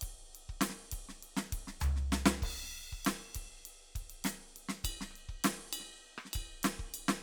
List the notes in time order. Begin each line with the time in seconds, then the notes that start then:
0.01 kick, hi-hat pedal, ride
0.08 kick
0.35 ride
0.49 kick
0.61 snare, hi-hat pedal, ride
0.69 snare
0.92 kick, ride
0.98 kick
1.08 snare
1.23 ride
1.36 snare
1.52 kick, ride
1.58 kick
1.67 snare
1.80 floor tom, hi-hat pedal
1.96 snare
2.12 snare
2.25 snare
2.37 snare
2.42 kick, hi-hat pedal, crash
2.52 kick
2.62 snare
2.92 kick
3.05 snare, hi-hat pedal, ride
3.35 kick, ride
3.41 kick, snare
3.65 ride
3.95 kick, snare, ride
4.02 kick
4.10 ride
4.24 snare, hi-hat pedal, ride
4.56 ride
4.69 snare
4.83 kick, hi-hat pedal, ride bell
4.90 kick
5.01 snare
5.11 cross-stick
5.16 ride
5.29 kick
5.34 kick
5.44 snare, hi-hat pedal, ride
5.73 ride bell
5.80 snare
6.03 ride
6.18 cross-stick
6.25 snare
6.33 kick, ride bell
6.41 kick
6.63 snare, hi-hat pedal, ride
6.78 kick, snare
6.85 kick
6.93 hi-hat pedal, ride bell
7.08 snare